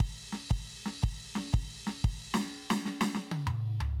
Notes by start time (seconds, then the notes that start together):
0.00 kick, crash
0.33 snare
0.49 kick, crash
0.86 snare
1.02 kick, crash
1.35 snare
1.52 kick, crash
1.87 snare
2.04 kick, crash
2.34 snare
2.70 snare
2.85 snare
3.01 snare
3.15 snare
3.31 high tom
3.47 mid tom
3.80 floor tom